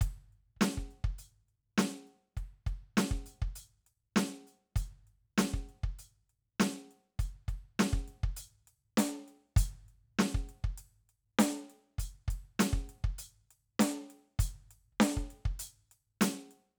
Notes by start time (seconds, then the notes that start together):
0.01 kick, closed hi-hat
0.32 closed hi-hat
0.56 kick
0.61 closed hi-hat, snare
0.77 kick
0.91 closed hi-hat
1.04 kick
1.18 closed hi-hat
1.48 closed hi-hat
1.78 closed hi-hat, snare
2.07 closed hi-hat
2.37 kick, closed hi-hat
2.66 kick, closed hi-hat
2.97 closed hi-hat, snare
3.11 kick
3.26 closed hi-hat
3.42 kick
3.56 closed hi-hat
3.86 closed hi-hat
4.16 closed hi-hat, snare
4.47 closed hi-hat
4.76 closed hi-hat, kick
5.07 closed hi-hat
5.38 closed hi-hat, kick, snare
5.54 kick
5.69 closed hi-hat
5.83 kick
5.99 closed hi-hat
6.29 closed hi-hat
6.60 closed hi-hat, snare
6.91 closed hi-hat
7.19 closed hi-hat, kick
7.48 kick, closed hi-hat
7.79 closed hi-hat, snare
7.93 kick
8.08 closed hi-hat
8.23 kick
8.37 closed hi-hat
8.67 closed hi-hat
8.97 closed hi-hat, snare
9.28 closed hi-hat
9.56 closed hi-hat, kick
9.88 closed hi-hat
10.19 closed hi-hat, snare
10.34 kick
10.49 closed hi-hat
10.64 kick
10.78 closed hi-hat
11.09 closed hi-hat
11.39 closed hi-hat, snare
11.70 closed hi-hat
11.98 closed hi-hat, kick
12.28 kick, closed hi-hat
12.59 closed hi-hat, snare
12.73 kick
12.89 closed hi-hat
13.04 kick
13.18 closed hi-hat
13.51 closed hi-hat
13.79 closed hi-hat, snare
14.10 closed hi-hat
14.39 closed hi-hat, kick
14.71 closed hi-hat
14.92 kick
15.00 closed hi-hat, snare
15.17 kick
15.30 closed hi-hat
15.45 kick
15.59 closed hi-hat
15.91 closed hi-hat
16.21 closed hi-hat, snare
16.51 closed hi-hat